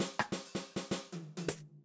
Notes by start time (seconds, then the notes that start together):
0.00 snare, hi-hat pedal
0.19 cross-stick
0.32 snare
0.45 hi-hat pedal
0.55 snare
0.76 snare
0.91 snare, hi-hat pedal
1.12 high tom
1.37 hi-hat pedal, high tom
1.48 high tom